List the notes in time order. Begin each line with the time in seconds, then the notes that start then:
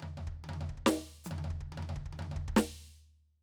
0.02 floor tom, high tom
0.17 floor tom
0.27 kick
0.44 high tom
0.49 floor tom
0.53 high tom
0.61 floor tom
0.69 kick
0.77 kick
0.86 snare
1.24 hi-hat pedal, high tom
1.31 floor tom
1.38 high tom
1.44 floor tom
1.50 kick
1.60 kick
1.72 high tom
1.77 floor tom
1.82 high tom
1.89 floor tom
1.96 kick
2.06 kick
2.13 high tom
2.19 floor tom, high tom
2.31 floor tom
2.36 kick
2.48 kick
2.56 snare